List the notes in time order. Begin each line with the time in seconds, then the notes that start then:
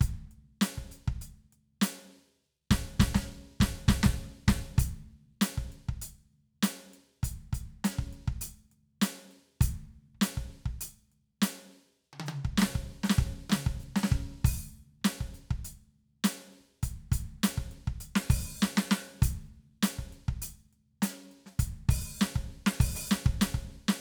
0.01 closed hi-hat, kick
0.31 closed hi-hat
0.61 closed hi-hat, snare
0.78 kick
0.92 closed hi-hat
1.08 kick
1.22 closed hi-hat
1.53 closed hi-hat
1.82 closed hi-hat, snare
2.71 kick, snare
3.00 kick, snare
3.15 kick, snare
3.60 kick, snare
3.88 kick, snare
4.03 kick, snare
4.24 cross-stick
4.48 kick, snare
4.78 closed hi-hat, kick
5.41 closed hi-hat, snare
5.58 kick
5.72 closed hi-hat
5.89 kick
6.02 closed hi-hat
6.33 closed hi-hat
6.63 closed hi-hat, snare
6.94 closed hi-hat
7.23 closed hi-hat, kick
7.53 closed hi-hat, kick
7.84 closed hi-hat, snare
7.99 kick
8.13 closed hi-hat
8.28 kick
8.41 closed hi-hat
8.72 closed hi-hat
9.02 closed hi-hat, snare
9.31 closed hi-hat
9.61 closed hi-hat, kick
10.15 kick
10.21 closed hi-hat, snare
10.37 kick
10.66 kick, crash
10.81 closed hi-hat
11.12 closed hi-hat
11.42 closed hi-hat, snare
12.13 high tom
12.20 high tom
12.26 hi-hat pedal, high tom
12.45 kick
12.58 snare, hi-hat pedal
12.62 snare
12.75 kick
13.04 snare
13.10 snare
13.18 kick
13.50 snare, hi-hat pedal, high tom
13.67 kick
13.80 hi-hat pedal
13.96 snare
14.04 snare
14.12 kick
14.45 open hi-hat, kick
15.02 open hi-hat, kick, snare, hi-hat pedal
15.21 kick
15.34 closed hi-hat
15.51 kick, crash
15.65 closed hi-hat
16.24 closed hi-hat, snare
16.53 closed hi-hat
16.60 kick
16.83 closed hi-hat, kick
17.12 closed hi-hat, kick
17.43 closed hi-hat, snare
17.58 kick
17.71 closed hi-hat
17.88 kick
18.00 closed hi-hat
18.16 snare
18.30 open hi-hat, kick
18.61 snare, hi-hat pedal
18.77 snare
18.91 snare
19.22 closed hi-hat, kick
19.45 hi-hat pedal
19.83 closed hi-hat, snare
19.99 kick
20.13 closed hi-hat
20.28 kick, crash
20.42 closed hi-hat
20.73 closed hi-hat
21.02 closed hi-hat, snare
21.32 closed hi-hat
21.46 snare
21.59 closed hi-hat, kick
21.89 open hi-hat, kick
22.20 snare, hi-hat pedal
22.36 kick
22.66 snare
22.80 open hi-hat, kick
22.95 open hi-hat, snare
23.09 snare, hi-hat pedal
23.26 kick
23.41 open hi-hat, snare, hi-hat pedal
23.54 kick
23.89 snare